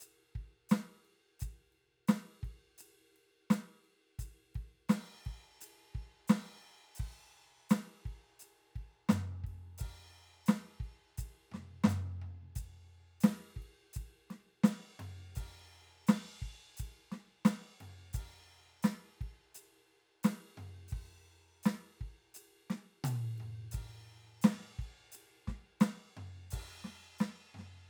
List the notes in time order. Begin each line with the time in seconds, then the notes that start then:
0.01 hi-hat pedal, ride
0.36 kick, ride
0.70 snare, hi-hat pedal, ride
1.06 ride
1.40 kick, hi-hat pedal, ride
1.73 ride
2.08 snare, hi-hat pedal, ride
2.44 kick, ride
2.79 hi-hat pedal, ride
3.17 ride
3.51 snare, hi-hat pedal, ride
3.85 ride
4.19 kick, hi-hat pedal, ride
4.55 kick, ride
4.90 snare, hi-hat pedal, crash
5.26 kick, ride
5.61 hi-hat pedal, ride
5.95 kick, ride
6.28 snare, hi-hat pedal, crash
6.63 ride
6.96 hi-hat pedal, crash
7.00 kick
7.70 snare, hi-hat pedal, ride
8.06 kick, ride
8.40 hi-hat pedal, ride
8.76 kick, ride
9.10 snare, floor tom, hi-hat pedal
9.44 kick, ride
9.78 kick, hi-hat pedal, crash
10.47 snare, hi-hat pedal, ride
10.81 kick, ride
11.18 kick, hi-hat pedal, ride
11.52 snare, floor tom
11.84 snare, floor tom
11.89 hi-hat pedal
12.22 floor tom
12.56 kick, hi-hat pedal, ride
13.21 snare, hi-hat pedal, ride
13.57 kick
13.63 ride
13.94 kick, hi-hat pedal, ride
14.31 snare, ride
14.64 snare, hi-hat pedal, ride
15.00 floor tom, ride
15.36 kick, hi-hat pedal, crash
16.08 snare, hi-hat pedal, ride
16.42 kick
16.78 kick, hi-hat pedal, ride
17.12 snare, ride
17.46 snare, hi-hat pedal, ride
17.81 floor tom, ride
18.14 kick, hi-hat pedal, crash
18.83 snare, hi-hat pedal, ride
19.22 kick, ride
19.55 hi-hat pedal, ride
19.88 ride
20.24 snare, hi-hat pedal, ride
20.58 floor tom, ride
20.89 hi-hat pedal, crash
20.93 kick
21.64 snare, hi-hat pedal, ride
22.01 kick
22.35 hi-hat pedal, ride
22.71 snare, ride
23.05 hi-hat pedal, mid tom, ride
23.39 floor tom, ride
23.72 kick, hi-hat pedal, crash
24.42 snare, hi-hat pedal, ride
24.79 kick, ride
25.12 hi-hat pedal, ride
25.48 kick, snare
25.81 snare, hi-hat pedal, ride
26.17 floor tom
26.51 kick, hi-hat pedal, crash
26.85 snare
27.19 snare, hi-hat pedal, ride
27.55 floor tom
27.59 snare